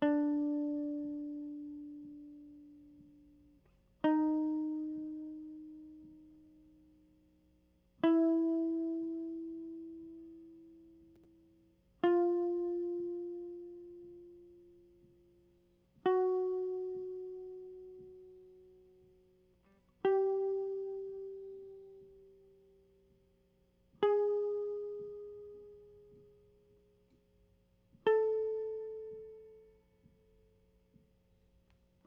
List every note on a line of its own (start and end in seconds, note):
0.03 3.62 D4
4.04 7.86 D#4
8.04 11.79 E4
12.04 15.87 F4
16.06 19.57 F#4
20.05 23.76 G4
24.03 27.61 G#4
28.07 30.56 A4